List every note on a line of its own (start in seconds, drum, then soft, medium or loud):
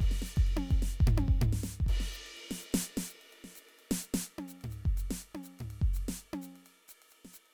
0.01 kick medium
0.01 ride medium
0.11 snare soft
0.22 snare soft
0.22 hi-hat pedal medium
0.37 kick medium
0.37 ride medium
0.47 ride medium
0.57 high tom loud
0.68 kick medium
0.68 hi-hat pedal soft
0.68 ride medium
0.82 snare medium
1.01 kick medium
1.07 floor tom loud
1.18 high tom loud
1.28 kick medium
1.42 floor tom loud
1.53 snare medium
1.63 snare medium
1.63 hi-hat pedal medium
1.80 kick medium
1.87 kick medium
1.87 ride medium
2.00 snare soft
2.12 hi-hat pedal medium
2.12 ride medium
2.26 ride medium
2.37 ride medium
2.51 snare medium
2.60 hi-hat pedal medium
2.60 ride medium
2.73 snare loud
2.73 ride medium
2.83 ride soft
2.97 snare medium
3.08 hi-hat pedal medium
3.08 ride medium
3.21 ride medium
3.29 hi-hat pedal soft
3.33 ride medium
3.44 snare soft
3.55 hi-hat pedal medium
3.55 ride medium
3.69 ride soft
3.77 hi-hat pedal soft
3.91 snare medium
4.01 hi-hat pedal medium
4.01 ride medium
4.14 snare medium
4.14 ride medium
4.27 ride medium
4.38 high tom medium
4.48 hi-hat pedal medium
4.48 ride medium
4.61 floor tom medium
4.61 ride medium
4.70 hi-hat pedal soft
4.70 ride medium
4.86 kick medium
4.97 hi-hat pedal medium
4.97 ride medium
5.11 snare medium
5.11 ride medium
5.22 ride medium
5.35 high tom medium
5.43 hi-hat pedal medium
5.43 ride medium
5.59 floor tom medium
5.59 ride medium
5.71 ride medium
5.82 kick medium
5.93 hi-hat pedal medium
5.93 ride medium
6.08 snare medium
6.08 ride medium
6.19 ride medium
6.33 high tom loud
6.42 hi-hat pedal medium
6.42 ride medium
6.56 ride medium
6.64 hi-hat pedal soft
6.64 ride medium
6.88 hi-hat pedal medium
6.88 ride medium
7.02 ride medium
7.08 hi-hat pedal soft
7.12 ride medium
7.25 snare soft
7.33 hi-hat pedal medium
7.33 ride medium
7.46 ride soft